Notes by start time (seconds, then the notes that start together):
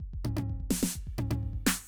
0.04 kick
0.13 kick
0.25 floor tom, high tom
0.37 floor tom, high tom
0.50 kick
0.60 kick
0.70 snare, ride
0.82 snare, ride
0.95 kick
1.07 kick
1.18 floor tom, high tom
1.30 floor tom, high tom
1.43 kick
1.53 kick
1.66 snare, crash